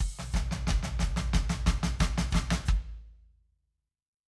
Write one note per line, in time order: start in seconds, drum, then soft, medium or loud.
0.01 kick medium
0.19 snare medium
0.19 floor tom loud
0.33 kick medium
0.33 snare medium
0.33 hi-hat pedal medium
0.37 floor tom loud
0.52 snare medium
0.52 floor tom loud
0.68 kick loud
0.68 snare loud
0.68 floor tom loud
0.68 hi-hat pedal medium
0.83 snare medium
0.83 floor tom loud
1.00 kick loud
1.00 snare loud
1.00 floor tom loud
1.00 hi-hat pedal medium
1.17 snare loud
1.17 floor tom loud
1.34 kick loud
1.34 snare loud
1.34 floor tom loud
1.34 hi-hat pedal medium
1.50 snare loud
1.50 floor tom loud
1.67 kick loud
1.67 snare loud
1.67 floor tom loud
1.67 hi-hat pedal medium
1.84 snare loud
1.84 floor tom loud
2.00 kick loud
2.00 snare loud
2.00 hi-hat pedal medium
2.00 floor tom loud
2.18 snare loud
2.18 floor tom loud
2.31 kick loud
2.31 snare loud
2.31 floor tom loud
2.31 hi-hat pedal medium
2.51 snare loud
2.51 floor tom loud
2.66 kick loud
2.66 hi-hat pedal medium